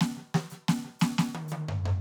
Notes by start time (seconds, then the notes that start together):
0.01 snare
0.17 snare
0.35 snare
0.51 snare, hi-hat pedal
0.69 snare
0.85 snare
1.00 snare, hi-hat pedal
1.19 snare
1.35 high tom
1.49 hi-hat pedal, high tom
1.69 floor tom
1.86 floor tom